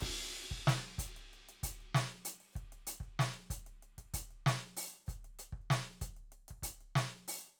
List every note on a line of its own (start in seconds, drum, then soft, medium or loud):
0.01 kick medium
0.01 ride loud
0.37 closed hi-hat soft
0.51 kick medium
0.67 snare loud
0.83 closed hi-hat soft
0.98 closed hi-hat loud
0.98 kick medium
1.16 closed hi-hat soft
1.33 closed hi-hat soft
1.49 closed hi-hat medium
1.63 closed hi-hat loud
1.63 kick medium
1.80 closed hi-hat soft
1.95 snare loud
2.10 closed hi-hat soft
2.25 closed hi-hat loud
2.40 open hi-hat soft
2.52 kick soft
2.52 hi-hat pedal soft
2.57 closed hi-hat soft
2.72 closed hi-hat soft
2.87 closed hi-hat loud
3.00 kick soft
3.00 closed hi-hat soft
3.19 snare loud
3.34 closed hi-hat soft
3.50 closed hi-hat medium
3.50 kick medium
3.66 closed hi-hat soft
3.83 closed hi-hat soft
3.98 kick soft
3.98 closed hi-hat medium
4.14 closed hi-hat loud
4.14 kick medium
4.31 closed hi-hat soft
4.46 snare loud
4.61 closed hi-hat soft
4.77 open hi-hat loud
4.94 open hi-hat soft
5.06 closed hi-hat medium
5.06 kick medium
5.06 hi-hat pedal soft
5.24 closed hi-hat soft
5.39 closed hi-hat medium
5.53 kick soft
5.62 closed hi-hat soft
5.70 snare loud
5.85 closed hi-hat soft
6.01 closed hi-hat medium
6.01 kick medium
6.17 closed hi-hat soft
6.32 closed hi-hat soft
6.48 kick soft
6.48 closed hi-hat medium
6.63 closed hi-hat loud
6.63 kick soft
6.81 closed hi-hat soft
6.96 snare loud
7.11 closed hi-hat soft
7.28 open hi-hat loud
7.46 open hi-hat soft